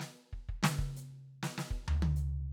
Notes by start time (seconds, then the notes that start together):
0.00 snare
0.33 kick
0.49 kick
0.63 snare, high tom
0.78 kick
0.96 hi-hat pedal
1.43 snare
1.58 snare
1.71 kick
1.88 floor tom
2.02 high tom
2.16 hi-hat pedal